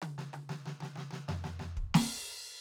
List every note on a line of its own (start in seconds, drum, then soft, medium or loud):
0.02 cross-stick medium
0.02 high tom medium
0.18 snare medium
0.18 high tom medium
0.33 cross-stick medium
0.33 high tom medium
0.49 snare medium
0.49 high tom medium
0.65 snare medium
0.65 high tom medium
0.80 snare medium
0.80 high tom medium
0.96 snare medium
0.96 high tom medium
1.11 snare medium
1.11 high tom medium
1.28 snare medium
1.28 floor tom medium
1.44 snare medium
1.44 floor tom medium
1.59 snare medium
1.59 floor tom medium
1.77 kick medium
1.94 snare loud
1.94 crash loud